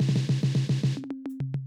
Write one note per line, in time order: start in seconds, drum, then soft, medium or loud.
0.03 snare loud
0.03 hi-hat pedal soft
0.09 snare loud
0.16 snare loud
0.29 snare loud
0.41 snare loud
0.41 hi-hat pedal soft
0.55 snare loud
0.69 snare loud
0.84 snare loud
0.84 hi-hat pedal soft
0.97 high tom loud
1.04 high tom loud
1.11 high tom loud
1.26 hi-hat pedal medium
1.26 high tom loud
1.40 floor tom loud
1.54 floor tom loud